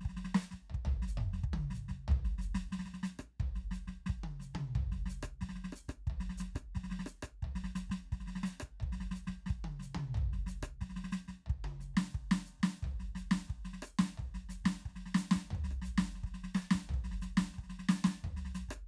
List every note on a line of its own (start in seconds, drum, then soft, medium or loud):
0.01 snare soft
0.05 kick soft
0.05 snare soft
0.17 snare soft
0.25 snare soft
0.42 hi-hat pedal soft
0.51 kick soft
0.51 snare soft
0.70 floor tom medium
0.75 kick soft
0.86 floor tom loud
1.03 snare soft
1.08 hi-hat pedal medium
1.18 kick soft
1.18 mid tom loud
1.34 snare soft
1.44 kick soft
1.54 high tom loud
1.71 snare soft
1.75 hi-hat pedal soft
1.89 kick soft
1.89 snare soft
2.08 kick soft
2.08 floor tom loud
2.25 snare soft
2.39 snare soft
2.39 hi-hat pedal soft
2.55 kick soft
2.55 snare medium
2.71 kick soft
2.71 snare medium
2.79 snare medium
2.86 snare soft
2.94 snare soft
3.04 snare medium
3.04 hi-hat pedal soft
3.19 kick soft
3.19 cross-stick medium
3.40 kick soft
3.40 floor tom medium
3.56 snare soft
3.71 snare soft
3.71 hi-hat pedal soft
3.88 kick soft
3.88 snare soft
4.06 kick soft
4.06 snare medium
4.24 high tom medium
4.40 snare soft
4.40 hi-hat pedal soft
4.54 kick soft
4.54 high tom loud
4.76 kick soft
4.76 floor tom loud
4.92 snare soft
5.06 snare soft
5.06 hi-hat pedal medium
5.23 kick soft
5.23 cross-stick medium
5.41 kick soft
5.41 snare soft
5.49 snare soft
5.56 snare soft
5.64 snare soft
5.73 cross-stick medium
5.73 hi-hat pedal medium
5.89 kick soft
5.89 cross-stick medium
6.07 kick soft
6.07 floor tom medium
6.21 snare soft
6.30 snare soft
6.38 snare soft
6.38 hi-hat pedal medium
6.56 kick soft
6.56 cross-stick medium
6.75 kick soft
6.75 snare soft
6.84 snare soft
6.90 snare soft
6.92 snare medium
7.00 snare soft
7.06 cross-stick medium
7.06 hi-hat pedal medium
7.23 kick soft
7.23 cross-stick medium
7.43 kick soft
7.43 floor tom medium
7.56 snare soft
7.64 snare soft
7.76 snare medium
7.76 hi-hat pedal medium
7.90 kick soft
7.90 snare medium
8.12 kick soft
8.12 snare soft
8.21 snare soft
8.26 snare soft
8.36 snare soft
8.44 snare medium
8.44 hi-hat pedal medium
8.60 kick soft
8.60 cross-stick medium
8.80 kick soft
8.80 floor tom medium
8.93 snare soft
9.01 snare soft
9.12 snare medium
9.16 hi-hat pedal soft
9.28 kick soft
9.28 snare medium
9.46 kick soft
9.46 snare soft
9.65 high tom loud
9.80 snare soft
9.80 hi-hat pedal medium
9.95 kick soft
9.95 high tom loud
10.15 kick soft
10.15 floor tom loud
10.33 snare soft
10.47 snare soft
10.47 hi-hat pedal medium
10.63 kick soft
10.63 cross-stick medium
10.81 kick soft
10.81 snare soft
10.90 snare soft
10.96 snare soft
11.04 snare soft
11.12 snare medium
11.12 hi-hat pedal soft
11.28 kick soft
11.28 snare soft
11.47 kick soft
11.47 floor tom medium
11.65 high tom medium
11.80 snare soft
11.80 hi-hat pedal soft
11.95 kick soft
11.95 snare medium
12.13 kick soft
12.13 snare soft
12.32 snare medium
12.46 snare soft
12.46 hi-hat pedal soft
12.60 kick soft
12.60 snare medium
12.83 kick soft
12.83 floor tom medium
13.00 snare soft
13.16 snare medium
13.16 hi-hat pedal soft
13.31 kick soft
13.31 snare medium
13.48 kick soft
13.48 snare soft
13.59 snare soft
13.65 snare medium
13.74 snare soft
13.83 cross-stick medium
13.83 hi-hat pedal soft
13.99 kick soft
13.99 snare loud
14.18 kick soft
14.18 floor tom medium
14.35 snare soft
14.49 snare soft
14.49 hi-hat pedal medium
14.65 kick soft
14.65 snare medium
14.80 snare soft
14.86 kick soft
14.86 snare soft
14.96 snare soft
15.06 snare soft
15.15 snare medium
15.15 hi-hat pedal medium
15.31 snare loud
15.36 kick soft
15.51 floor tom loud
15.55 kick soft
15.64 snare soft
15.71 cross-stick soft
15.82 snare medium
15.82 hi-hat pedal medium
15.98 kick soft
15.98 snare medium
16.16 snare soft
16.24 kick soft
16.24 snare soft
16.34 snare soft
16.44 snare soft
16.55 snare loud
16.55 hi-hat pedal soft
16.71 kick soft
16.71 snare loud
16.89 floor tom loud
16.94 kick soft
17.04 snare soft
17.12 snare soft
17.22 snare medium
17.22 hi-hat pedal soft
17.38 kick soft
17.38 snare loud
17.54 snare soft
17.59 kick soft
17.64 snare soft
17.70 snare medium
17.79 snare soft
17.89 snare loud
17.89 hi-hat pedal soft
18.05 kick soft
18.05 snare loud
18.24 kick soft
18.24 floor tom medium
18.37 snare soft
18.45 snare soft
18.55 snare medium
18.55 hi-hat pedal medium
18.69 kick soft
18.69 cross-stick medium